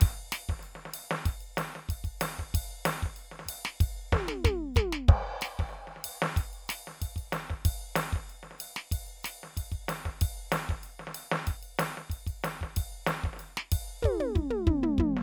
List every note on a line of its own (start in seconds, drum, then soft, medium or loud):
0.01 kick loud
0.01 ride loud
0.32 snare loud
0.32 hi-hat pedal medium
0.32 ride loud
0.49 kick medium
0.49 snare soft
0.59 snare soft
0.59 ride soft
0.71 kick soft
0.71 snare soft
0.94 hi-hat pedal medium
0.94 ride loud
1.11 snare loud
1.26 kick medium
1.26 ride medium
1.41 ride soft
1.57 snare loud
1.57 hi-hat pedal medium
1.57 ride bell medium
1.75 snare soft
1.89 kick medium
1.89 ride medium
2.04 kick medium
2.04 ride soft
2.20 snare loud
2.20 hi-hat pedal medium
2.20 ride loud
2.39 kick soft
2.39 snare soft
2.54 kick medium
2.54 ride loud
2.85 snare loud
2.85 hi-hat pedal medium
2.85 ride loud
3.03 kick medium
3.03 snare soft
3.16 ride soft
3.32 snare soft
3.39 snare soft
3.46 kick soft
3.46 hi-hat pedal medium
3.46 ride loud
3.65 snare loud
3.80 kick medium
3.80 ride medium
4.13 kick medium
4.13 snare loud
4.13 mid tom loud
4.28 snare loud
4.28 mid tom medium
4.44 kick medium
4.44 snare soft
4.44 snare loud
4.44 hi-hat pedal medium
4.44 mid tom loud
4.74 kick medium
4.74 snare loud
4.74 hi-hat pedal medium
4.74 mid tom loud
4.93 snare loud
5.08 kick loud
5.08 crash loud
5.41 snare loud
5.41 hi-hat pedal medium
5.41 ride medium
5.59 kick medium
5.59 snare soft
5.69 snare soft
5.69 hi-hat pedal soft
5.87 snare soft
5.96 snare soft
6.04 kick soft
6.04 hi-hat pedal medium
6.04 ride loud
6.22 snare loud
6.37 kick medium
6.37 ride medium
6.53 ride soft
6.68 snare loud
6.68 hi-hat pedal medium
6.68 ride loud
6.87 snare soft
7.02 kick medium
7.02 ride medium
7.16 kick medium
7.16 ride soft
7.33 snare loud
7.33 hi-hat pedal medium
7.33 ride medium
7.50 kick soft
7.50 snare soft
7.65 kick medium
7.65 ride loud
7.96 snare loud
7.96 hi-hat pedal medium
7.96 ride loud
8.13 kick medium
8.13 snare soft
8.30 ride soft
8.43 snare soft
8.51 snare soft
8.55 snare soft
8.55 hi-hat pedal medium
8.60 ride loud
8.76 snare loud
8.92 kick medium
8.92 ride loud
9.07 ride soft
9.23 snare loud
9.23 hi-hat pedal medium
9.23 ride loud
9.43 snare soft
9.57 kick medium
9.57 ride medium
9.72 kick medium
9.72 ride soft
9.88 snare medium
9.88 hi-hat pedal medium
9.88 ride medium
10.05 kick soft
10.05 snare soft
10.21 kick medium
10.21 ride loud
10.52 snare loud
10.52 hi-hat pedal medium
10.52 ride medium
10.69 kick medium
10.69 snare soft
10.79 snare soft
10.83 ride medium
11.00 snare soft
11.07 snare medium
11.15 hi-hat pedal medium
11.15 ride loud
11.32 snare loud
11.47 kick medium
11.47 ride medium
11.63 ride soft
11.78 snare loud
11.78 hi-hat pedal medium
11.78 ride loud
11.97 snare soft
12.10 kick soft
12.10 ride medium
12.27 kick medium
12.27 ride medium
12.43 snare loud
12.43 hi-hat pedal medium
12.43 ride medium
12.61 kick soft
12.61 snare soft
12.76 kick medium
12.76 ride loud
13.06 kick soft
13.06 snare loud
13.06 hi-hat pedal medium
13.06 ride medium
13.24 kick medium
13.24 snare soft
13.33 snare soft
13.37 snare soft
13.37 hi-hat pedal medium
13.37 ride medium
13.40 snare soft
13.57 snare loud
13.72 kick medium
13.72 hi-hat pedal soft
13.72 ride loud
14.02 kick medium
14.02 mid tom loud
14.02 high tom loud
14.20 high tom loud
14.35 kick medium
14.35 floor tom medium
14.35 hi-hat pedal soft
14.50 mid tom loud
14.66 kick medium
14.66 floor tom loud
14.83 floor tom loud
14.98 kick medium
14.98 floor tom loud
15.17 snare medium